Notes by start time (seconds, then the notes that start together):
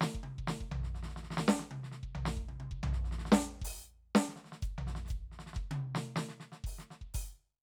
0.02 snare
0.15 kick
0.24 high tom
0.39 kick
0.48 snare
0.61 kick
0.72 floor tom
0.84 snare
0.95 snare
1.03 snare
1.09 snare
1.17 snare
1.24 snare
1.31 snare
1.38 snare
1.49 snare
1.60 snare
1.72 high tom
1.84 snare
1.92 snare
2.04 kick
2.16 floor tom
2.26 snare
2.38 kick
2.49 high tom
2.61 high tom
2.72 kick
2.84 floor tom
2.94 snare
3.05 snare
3.12 snare
3.19 snare
3.26 snare
3.33 snare
3.62 open hi-hat, kick
4.16 snare
4.29 snare
4.37 snare
4.42 snare
4.45 snare
4.53 snare
4.63 kick, hi-hat pedal
4.79 floor tom
4.88 snare
4.96 snare
5.06 snare, hi-hat pedal
5.11 kick
5.32 snare
5.40 snare
5.47 snare
5.54 kick, snare
5.72 high tom
5.96 snare
6.17 snare, hi-hat pedal
6.29 snare
6.41 snare
6.53 snare
6.65 open hi-hat, kick
6.79 snare
6.91 snare
7.02 kick
7.15 open hi-hat, kick